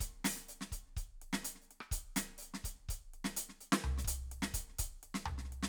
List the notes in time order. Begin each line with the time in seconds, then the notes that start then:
0.01 closed hi-hat, kick
0.09 kick
0.25 open hi-hat, snare
0.37 snare
0.49 closed hi-hat, hi-hat pedal
0.62 snare
0.72 closed hi-hat, kick
0.87 snare
0.97 closed hi-hat, kick
1.22 closed hi-hat
1.34 snare
1.44 closed hi-hat, snare
1.56 snare
1.62 hi-hat pedal
1.71 closed hi-hat
1.81 cross-stick
1.92 closed hi-hat, kick
1.99 kick
2.17 closed hi-hat, snare
2.38 hi-hat pedal
2.43 closed hi-hat
2.54 snare
2.65 closed hi-hat, kick
2.75 snare
2.79 snare
2.89 closed hi-hat, kick
2.95 kick
3.14 closed hi-hat
3.25 snare
3.36 closed hi-hat, snare
3.50 snare
3.61 closed hi-hat
3.73 snare
3.85 floor tom
3.98 snare, hi-hat pedal
4.05 closed hi-hat, kick
4.32 closed hi-hat
4.43 snare
4.54 closed hi-hat, kick
4.61 kick
4.70 snare
4.79 closed hi-hat, kick
4.86 kick
5.03 closed hi-hat
5.15 snare
5.26 floor tom
5.38 snare
5.45 snare
5.53 open hi-hat
5.63 snare